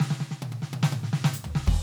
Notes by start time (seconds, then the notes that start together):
0.01 snare
0.10 snare
0.20 snare
0.31 snare
0.42 high tom
0.52 high tom
0.62 snare
0.73 high tom
0.83 snare
0.92 high tom
1.03 snare
1.13 snare
1.24 snare
1.34 percussion
1.44 floor tom
1.54 kick, snare
1.66 kick, crash